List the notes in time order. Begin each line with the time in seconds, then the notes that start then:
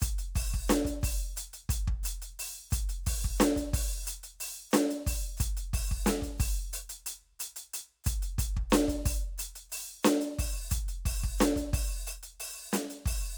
0.01 closed hi-hat, kick, hi-hat pedal
0.19 closed hi-hat
0.35 open hi-hat, kick, hi-hat pedal
0.54 kick
0.68 closed hi-hat, snare, hi-hat pedal
0.85 closed hi-hat, kick
1.02 open hi-hat, kick, hi-hat pedal
1.37 closed hi-hat, hi-hat pedal
1.54 closed hi-hat
1.70 open hi-hat, kick
1.88 kick
2.04 closed hi-hat, hi-hat pedal
2.22 closed hi-hat
2.40 open hi-hat
2.71 closed hi-hat, kick, hi-hat pedal
2.89 closed hi-hat
3.04 open hi-hat, kick, hi-hat pedal
3.25 kick
3.38 closed hi-hat, snare, hi-hat pedal
3.57 closed hi-hat, kick
3.74 open hi-hat, kick
4.06 closed hi-hat, hi-hat pedal
4.24 closed hi-hat
4.39 open hi-hat, hi-hat pedal
4.71 closed hi-hat, snare, hi-hat pedal
4.91 closed hi-hat
5.05 open hi-hat, kick, hi-hat pedal
5.37 closed hi-hat, kick, hi-hat pedal
5.57 closed hi-hat
5.74 open hi-hat, kick
5.92 kick
6.05 closed hi-hat, snare, hi-hat pedal
6.22 closed hi-hat, kick
6.38 open hi-hat, kick, hi-hat pedal
6.73 open hi-hat, hi-hat pedal
6.90 closed hi-hat
7.07 closed hi-hat
7.40 closed hi-hat, hi-hat pedal
7.56 closed hi-hat
7.74 closed hi-hat
8.04 closed hi-hat, kick, hi-hat pedal
8.23 closed hi-hat
8.39 open hi-hat, kick
8.57 kick
8.70 closed hi-hat, snare, hi-hat pedal
8.88 closed hi-hat, kick
9.05 open hi-hat, kick, hi-hat pedal
9.38 closed hi-hat, hi-hat pedal
9.56 closed hi-hat
9.70 open hi-hat, hi-hat pedal
10.03 closed hi-hat, snare, hi-hat pedal
10.21 closed hi-hat
10.39 open hi-hat, kick
10.70 closed hi-hat, kick, hi-hat pedal
10.89 closed hi-hat
11.06 open hi-hat, kick
11.24 kick
11.38 closed hi-hat, snare, hi-hat pedal
11.56 closed hi-hat, kick
11.74 open hi-hat, kick
12.07 open hi-hat, hi-hat pedal
12.23 closed hi-hat
12.40 open hi-hat
12.72 closed hi-hat, snare, hi-hat pedal
12.90 closed hi-hat
13.06 open hi-hat, kick, hi-hat pedal